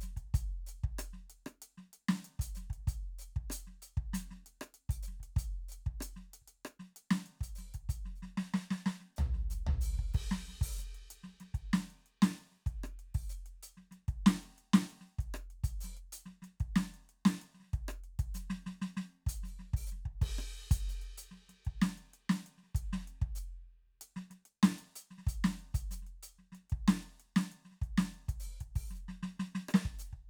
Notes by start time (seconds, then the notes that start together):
0.01 snare, hi-hat pedal
0.17 kick, closed hi-hat
0.34 open hi-hat, kick
0.67 closed hi-hat, hi-hat pedal
0.84 kick
0.99 cross-stick, closed hi-hat
1.13 snare
1.30 closed hi-hat
1.46 cross-stick
1.62 closed hi-hat
1.78 snare
1.93 closed hi-hat
2.09 snare
2.25 closed hi-hat
2.40 open hi-hat, kick
2.55 snare, hi-hat pedal
2.70 kick, closed hi-hat
2.88 open hi-hat, kick
3.19 closed hi-hat, hi-hat pedal
3.36 kick
3.50 closed hi-hat, cross-stick
3.67 snare
3.82 closed hi-hat
3.97 kick
4.14 closed hi-hat, snare
4.31 snare
4.46 closed hi-hat
4.61 cross-stick
4.74 closed hi-hat
4.90 kick, open hi-hat
5.03 hi-hat pedal
5.08 snare
5.20 kick, closed hi-hat
5.37 open hi-hat, kick
5.69 closed hi-hat, hi-hat pedal
5.87 kick
6.01 cross-stick, closed hi-hat
6.16 snare
6.34 closed hi-hat
6.42 kick
6.48 closed hi-hat
6.65 cross-stick
6.80 snare
6.97 closed hi-hat
7.11 snare
7.26 closed hi-hat
7.41 open hi-hat, kick
7.56 snare, hi-hat pedal
7.74 kick, closed hi-hat
7.89 open hi-hat, kick
8.06 snare
8.16 hi-hat pedal
8.23 snare
8.38 snare
8.54 snare
8.71 snare
8.86 snare
9.01 snare
9.17 floor tom, hi-hat pedal
9.34 snare
9.51 snare, hi-hat pedal
9.67 floor tom
9.81 hi-hat pedal
9.94 snare
9.99 kick
10.14 kick, crash
10.31 snare
10.48 snare
10.61 open hi-hat, kick
10.79 snare, hi-hat pedal
10.95 closed hi-hat
11.11 closed hi-hat
11.24 snare
11.40 snare, closed hi-hat
11.54 kick, closed hi-hat
11.74 snare
11.91 closed hi-hat
12.06 closed hi-hat
12.22 snare
12.39 closed hi-hat
12.52 snare
12.67 kick, closed hi-hat
12.84 cross-stick
12.99 closed hi-hat
13.15 kick, open hi-hat
13.30 hi-hat pedal
13.46 closed hi-hat
13.63 closed hi-hat
13.77 snare
13.91 snare, closed hi-hat
14.08 kick, closed hi-hat
14.26 snare
14.43 closed hi-hat
14.58 closed hi-hat
14.74 snare
14.90 closed hi-hat
15.01 snare
15.19 kick, closed hi-hat
15.34 cross-stick
15.51 closed hi-hat
15.64 closed hi-hat, kick
15.81 snare, hi-hat pedal
15.97 closed hi-hat
16.13 closed hi-hat
16.26 snare
16.42 snare, closed hi-hat
16.60 kick, closed hi-hat
16.76 snare
16.94 closed hi-hat
17.09 closed hi-hat
17.26 snare
17.42 closed hi-hat
17.55 snare
17.60 snare
17.63 snare
17.69 snare
17.74 kick, closed hi-hat
17.89 cross-stick
18.04 closed hi-hat
18.19 kick, open hi-hat
18.35 snare, hi-hat pedal
18.50 snare
18.67 snare
18.82 snare
18.97 snare
19.27 open hi-hat, kick
19.44 snare, hi-hat pedal
19.59 snare
19.74 open hi-hat, kick
19.87 hi-hat pedal
19.92 snare
20.06 kick
20.22 kick, crash
20.39 cross-stick
20.55 closed hi-hat
20.71 closed hi-hat, kick
20.88 snare, hi-hat pedal
21.02 closed hi-hat
21.18 closed hi-hat
21.31 snare
21.49 snare, closed hi-hat
21.65 kick, closed hi-hat
21.82 snare
21.98 closed hi-hat
22.14 closed hi-hat
22.30 snare
22.47 closed hi-hat
22.58 snare
22.64 snare
22.69 snare
22.75 kick, closed hi-hat
22.93 snare
23.08 closed hi-hat
23.22 kick, open hi-hat
23.36 hi-hat pedal
24.02 closed hi-hat
24.16 snare
24.31 snare, closed hi-hat
24.46 closed hi-hat
24.63 snare
24.79 closed hi-hat
24.96 closed hi-hat
25.11 snare
25.18 snare
25.24 kick, snare
25.29 closed hi-hat
25.44 snare
25.59 closed hi-hat
25.75 closed hi-hat, kick
25.91 snare, hi-hat pedal
26.02 snare
26.07 closed hi-hat
26.23 closed hi-hat
26.39 snare
26.52 snare, closed hi-hat
26.70 kick, closed hi-hat
26.88 snare
27.03 closed hi-hat
27.20 closed hi-hat
27.36 snare
27.52 closed hi-hat
27.65 snare
27.72 snare
27.77 snare
27.82 kick, closed hi-hat
27.98 snare
28.14 closed hi-hat
28.29 kick, open hi-hat
28.40 hi-hat pedal
28.45 snare
28.61 kick, closed hi-hat
28.76 open hi-hat, kick
28.91 snare
28.95 hi-hat pedal
29.09 snare
29.23 snare
29.40 snare
29.55 snare
29.69 cross-stick
29.74 snare
29.85 kick
29.99 hi-hat pedal
30.13 kick